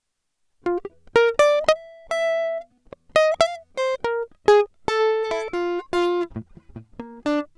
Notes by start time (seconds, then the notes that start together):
0.67 F4
0.86 A4
1.17 A#4
1.40 D5
1.70 D#5
2.12 E5
3.17 D#5
3.42 F5
3.79 C5
4.06 A#4
4.49 G#4
4.89 A4
5.55 F4
5.94 F4
7.01 A#3
7.27 D4